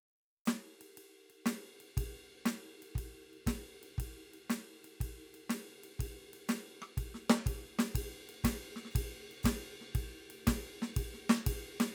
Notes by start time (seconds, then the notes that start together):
0.46 snare, hi-hat pedal, ride
0.81 ride
0.97 ride
1.30 ride
1.46 snare, hi-hat pedal, ride
1.80 ride
1.97 kick, ride
2.46 snare, hi-hat pedal, ride
2.82 ride
2.95 kick, ride
3.33 ride
3.47 kick, snare, hi-hat pedal, ride
3.83 ride
3.98 kick, ride
4.34 ride
4.50 snare, hi-hat pedal, ride
4.84 ride
5.01 kick, ride
5.34 ride
5.50 snare, hi-hat pedal, ride
5.84 ride
5.99 kick, ride
6.33 ride
6.49 snare, hi-hat pedal, ride
6.82 cross-stick
6.97 kick, ride
7.14 snare
7.30 snare
7.46 kick, ride
7.79 snare, ride
7.95 kick, ride
8.29 ride
8.44 kick, snare, hi-hat pedal, ride
8.76 snare
8.85 snare
8.91 hi-hat pedal
8.95 kick, snare, ride
9.31 ride
9.43 kick, snare, hi-hat pedal, ride
9.81 snare
9.95 kick, ride
10.30 ride
10.47 kick, snare, hi-hat pedal, ride
10.82 snare
10.94 kick, hi-hat pedal, ride
11.14 snare
11.29 snare
11.46 kick, hi-hat pedal, ride
11.80 snare, ride